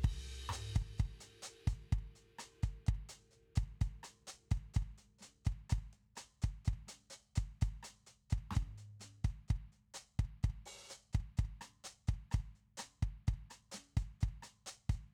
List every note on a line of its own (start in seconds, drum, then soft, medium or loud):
0.01 kick soft
0.01 hi-hat pedal soft
0.01 crash medium
0.19 crash soft
0.49 open hi-hat medium
0.49 cross-stick medium
0.49 hi-hat pedal medium
0.49 mid tom medium
0.75 closed hi-hat soft
0.75 kick soft
0.81 kick soft
0.98 closed hi-hat soft
0.98 kick soft
1.05 kick soft
1.19 closed hi-hat medium
1.19 snare soft
1.42 closed hi-hat soft
1.42 hi-hat pedal medium
1.67 closed hi-hat soft
1.67 kick soft
1.73 kick soft
1.92 kick soft
1.92 closed hi-hat soft
1.98 kick soft
2.15 closed hi-hat soft
2.38 closed hi-hat medium
2.38 cross-stick soft
2.38 snare soft
2.63 closed hi-hat soft
2.63 kick soft
2.87 kick soft
2.87 closed hi-hat soft
2.94 kick soft
3.09 open hi-hat medium
3.31 closed hi-hat soft
3.31 hi-hat pedal soft
3.56 closed hi-hat medium
3.56 kick soft
3.63 kick soft
3.81 closed hi-hat soft
3.81 kick soft
3.87 kick soft
4.03 closed hi-hat medium
4.03 cross-stick soft
4.03 snare soft
4.27 hi-hat pedal medium
4.51 closed hi-hat soft
4.51 kick soft
4.57 kick soft
4.74 closed hi-hat medium
4.74 kick soft
4.82 kick soft
4.98 closed hi-hat soft
5.19 closed hi-hat soft
5.19 snare soft
5.19 hi-hat pedal soft
5.19 crash soft
5.45 closed hi-hat soft
5.45 kick soft
5.52 kick soft
5.69 closed hi-hat medium
5.69 kick soft
5.69 cross-stick soft
5.78 kick soft
5.93 closed hi-hat soft
6.15 closed hi-hat medium
6.15 cross-stick soft
6.15 snare soft
6.15 hi-hat pedal soft
6.42 closed hi-hat soft
6.42 kick soft
6.65 closed hi-hat soft
6.65 kick soft
6.73 kick soft
6.87 open hi-hat medium
6.87 snare soft
7.10 closed hi-hat soft
7.10 hi-hat pedal medium
7.35 closed hi-hat soft
7.35 kick soft
7.61 closed hi-hat soft
7.61 kick soft
7.68 kick soft
7.83 closed hi-hat medium
7.83 cross-stick soft
7.83 snare soft
8.07 closed hi-hat soft
8.30 closed hi-hat soft
8.30 kick soft
8.38 kick soft
8.51 closed hi-hat medium
8.51 snare soft
8.51 mid tom soft
8.56 kick soft
8.62 kick soft
8.78 closed hi-hat soft
9.00 closed hi-hat soft
9.00 snare soft
9.00 hi-hat pedal soft
9.24 closed hi-hat soft
9.24 kick soft
9.30 kick soft
9.48 closed hi-hat soft
9.48 kick soft
9.56 kick soft
9.72 closed hi-hat soft
9.94 cross-stick soft
9.94 hi-hat pedal medium
10.19 closed hi-hat soft
10.19 kick soft
10.24 kick soft
10.43 closed hi-hat soft
10.43 kick soft
10.50 kick soft
10.66 open hi-hat medium
10.90 open hi-hat soft
10.90 hi-hat pedal medium
11.13 closed hi-hat soft
11.13 kick soft
11.20 kick soft
11.37 closed hi-hat soft
11.37 kick soft
11.44 kick soft
11.61 closed hi-hat medium
11.61 cross-stick soft
11.61 snare soft
11.84 hi-hat pedal medium
12.07 closed hi-hat soft
12.07 kick soft
12.14 kick soft
12.31 closed hi-hat medium
12.31 kick soft
12.31 cross-stick soft
12.31 hi-hat pedal soft
12.40 kick soft
12.55 closed hi-hat soft
12.77 closed hi-hat soft
12.77 cross-stick soft
12.77 snare soft
12.77 hi-hat pedal medium
13.02 closed hi-hat soft
13.02 kick soft
13.27 closed hi-hat soft
13.27 kick soft
13.33 kick soft
13.50 closed hi-hat medium
13.50 cross-stick soft
13.72 closed hi-hat medium
13.72 snare soft
13.72 hi-hat pedal medium
13.97 closed hi-hat soft
13.97 kick soft
14.02 kick soft
14.21 closed hi-hat soft
14.21 kick soft
14.28 kick soft
14.43 closed hi-hat medium
14.43 cross-stick soft
14.66 hi-hat pedal medium
14.89 closed hi-hat soft
14.89 kick soft
14.95 kick soft